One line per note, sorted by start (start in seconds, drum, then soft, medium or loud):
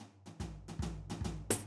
0.00 floor tom medium
0.26 floor tom medium
0.26 high tom medium
0.40 kick soft
0.40 floor tom medium
0.40 high tom medium
0.68 floor tom medium
0.68 high tom medium
0.79 kick soft
0.79 floor tom medium
0.79 high tom loud
1.10 floor tom loud
1.10 high tom medium
1.21 kick soft
1.21 floor tom medium
1.21 high tom loud
1.50 floor tom loud
1.50 high tom loud